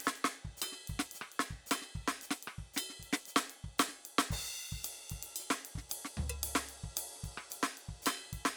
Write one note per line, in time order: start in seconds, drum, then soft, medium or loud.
0.01 hi-hat pedal medium
0.01 ride medium
0.08 snare loud
0.16 ride soft
0.25 snare loud
0.45 kick soft
0.58 hi-hat pedal medium
0.62 cross-stick medium
0.62 ride bell loud
0.73 snare soft
0.88 kick soft
0.88 ride medium
0.96 kick soft
1.00 snare loud
1.12 hi-hat pedal medium
1.12 ride medium
1.22 cross-stick medium
1.32 ride soft
1.40 snare medium
1.51 kick soft
1.67 hi-hat pedal medium
1.72 snare loud
1.72 ride bell loud
1.82 snare soft
1.96 kick soft
1.96 ride soft
2.08 snare loud
2.22 hi-hat pedal medium
2.22 ride soft
2.31 snare loud
2.43 ride medium
2.48 cross-stick medium
2.59 kick soft
2.74 snare medium
2.74 hi-hat pedal medium
2.78 ride bell loud
2.90 snare soft
3.00 kick soft
3.00 ride soft
3.13 snare loud
3.26 hi-hat pedal medium
3.26 ride soft
3.37 snare loud
3.50 ride soft
3.65 kick soft
3.79 snare loud
3.79 hi-hat pedal medium
3.79 ride bell medium
3.89 snare soft
4.06 ride medium
4.19 snare loud
4.31 kick soft
4.31 hi-hat pedal medium
4.31 crash loud
4.43 kick soft
4.73 kick soft
4.84 hi-hat pedal medium
4.84 ride loud
4.98 snare soft
5.04 snare soft
5.10 kick soft
5.10 snare soft
5.10 ride medium
5.12 snare soft
5.23 ride medium
5.36 hi-hat pedal medium
5.36 ride bell medium
5.51 snare loud
5.66 ride medium
5.76 kick soft
5.76 snare soft
5.90 hi-hat pedal medium
5.90 ride loud
6.05 snare medium
6.18 kick soft
6.18 floor tom medium
6.30 percussion loud
6.44 hi-hat pedal medium
6.44 ride loud
6.56 snare loud
6.69 ride soft
6.84 kick soft
6.97 hi-hat pedal medium
6.97 ride loud
7.16 snare soft
7.24 kick soft
7.24 ride soft
7.38 cross-stick medium
7.51 hi-hat pedal medium
7.51 ride medium
7.64 snare loud
7.78 ride soft
7.89 kick soft
8.03 hi-hat pedal medium
8.03 ride bell loud
8.07 snare loud
8.33 kick soft
8.33 ride medium
8.46 snare loud